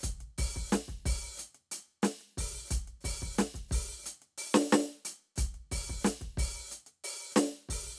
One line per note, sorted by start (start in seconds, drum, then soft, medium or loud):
0.01 closed hi-hat loud
0.01 kick medium
0.01 hi-hat pedal medium
0.21 closed hi-hat soft
0.39 open hi-hat loud
0.39 kick medium
0.57 kick medium
0.70 closed hi-hat loud
0.70 snare loud
0.70 hi-hat pedal medium
0.89 kick medium
0.89 closed hi-hat soft
1.06 open hi-hat loud
1.06 kick medium
1.38 closed hi-hat loud
1.38 hi-hat pedal medium
1.55 closed hi-hat soft
1.72 open hi-hat loud
2.03 closed hi-hat loud
2.03 snare loud
2.03 hi-hat pedal medium
2.22 closed hi-hat soft
2.38 open hi-hat loud
2.38 kick medium
2.68 closed hi-hat loud
2.68 kick medium
2.68 hi-hat pedal medium
2.88 closed hi-hat soft
3.02 open hi-hat loud
3.02 kick medium
3.02 hi-hat pedal soft
3.23 kick medium
3.35 closed hi-hat loud
3.35 hi-hat pedal medium
3.39 snare loud
3.55 kick soft
3.55 closed hi-hat medium
3.69 open hi-hat loud
3.69 kick medium
3.69 hi-hat pedal soft
4.04 closed hi-hat loud
4.04 hi-hat pedal medium
4.23 closed hi-hat soft
4.39 open hi-hat loud
4.55 snare loud
4.69 hi-hat pedal medium
4.73 snare loud
5.06 closed hi-hat loud
5.37 closed hi-hat loud
5.37 kick medium
5.37 hi-hat pedal medium
5.55 closed hi-hat soft
5.72 open hi-hat loud
5.72 kick medium
5.90 kick medium
6.03 closed hi-hat loud
6.03 snare loud
6.03 hi-hat pedal medium
6.22 kick soft
6.22 closed hi-hat soft
6.38 open hi-hat loud
6.38 kick medium
6.69 closed hi-hat medium
6.69 hi-hat pedal soft
6.87 closed hi-hat medium
7.05 open hi-hat loud
7.32 hi-hat pedal medium
7.37 closed hi-hat loud
7.37 snare loud
7.54 closed hi-hat soft
7.70 open hi-hat loud
7.70 kick medium